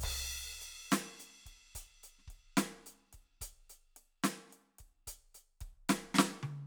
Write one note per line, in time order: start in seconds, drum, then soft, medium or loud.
0.01 kick soft
0.01 hi-hat pedal medium
0.01 crash loud
0.10 kick soft
0.62 closed hi-hat soft
0.92 open hi-hat medium
0.92 snare loud
1.20 closed hi-hat soft
1.20 snare soft
1.46 kick soft
1.46 closed hi-hat soft
1.76 open hi-hat medium
1.76 kick soft
2.04 closed hi-hat soft
2.19 snare soft
2.28 kick soft
2.28 snare soft
2.28 closed hi-hat soft
2.58 closed hi-hat medium
2.58 snare loud
2.87 closed hi-hat soft
3.13 kick soft
3.13 closed hi-hat soft
3.42 closed hi-hat medium
3.42 kick soft
3.70 closed hi-hat soft
3.97 closed hi-hat soft
4.24 closed hi-hat medium
4.24 snare medium
4.24 hi-hat pedal soft
4.49 snare soft
4.49 closed hi-hat soft
4.79 kick soft
4.79 closed hi-hat soft
5.08 closed hi-hat medium
5.08 kick soft
5.35 closed hi-hat soft
5.61 kick soft
5.61 closed hi-hat soft
5.89 closed hi-hat medium
5.89 snare loud
6.15 snare medium
6.19 snare loud
6.43 high tom medium